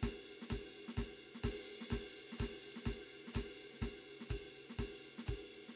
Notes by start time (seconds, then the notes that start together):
0.01 kick, snare, hi-hat pedal, ride
0.42 snare
0.50 kick, snare, hi-hat pedal, ride
0.88 snare
0.97 kick, snare, ride
1.35 snare
1.44 kick, snare, hi-hat pedal, ride
1.81 snare
1.91 kick, snare, ride
2.32 snare
2.39 kick, snare, hi-hat pedal, ride
2.76 snare
2.86 kick, snare, ride
3.27 snare
3.34 kick, snare, hi-hat pedal, ride
3.74 snare
3.82 kick, snare, ride
4.21 snare
4.30 kick, hi-hat pedal, ride
4.70 snare
4.75 kick, hi-hat pedal, ride
4.79 snare
5.19 snare
5.27 kick, hi-hat pedal, ride
5.69 snare